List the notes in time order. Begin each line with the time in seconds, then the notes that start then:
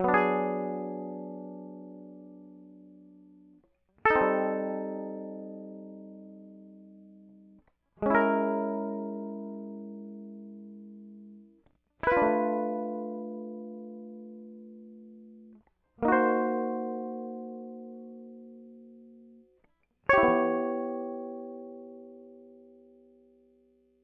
0.00 F#3
0.04 B3
0.09 D4
0.14 G#4
4.05 A4
4.10 D#4
4.16 C4
4.22 G3
8.03 G#3 C#4
8.10 E4
8.15 A#4
12.03 E4 B4
12.12 F4
12.17 D4
12.22 A3
16.03 A#3 D#4
16.08 F#4 C5
20.09 G4 C#5
20.18 E4
20.23 B3
20.29 F3